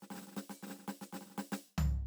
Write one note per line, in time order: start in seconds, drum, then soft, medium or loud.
0.00 snare soft
0.00 hi-hat pedal soft
0.10 snare soft
0.14 snare soft
0.17 snare soft
0.21 snare soft
0.27 snare soft
0.32 snare soft
0.37 snare medium
0.50 snare soft
0.50 hi-hat pedal soft
0.63 snare soft
0.67 snare soft
0.70 snare soft
0.74 snare soft
0.79 snare soft
0.82 snare soft
0.88 snare medium
1.01 snare soft
1.01 hi-hat pedal soft
1.13 snare soft
1.14 snare soft
1.21 snare soft
1.26 snare soft
1.30 snare soft
1.34 snare soft
1.38 snare medium
1.52 snare medium
1.52 hi-hat pedal soft
1.78 floor tom loud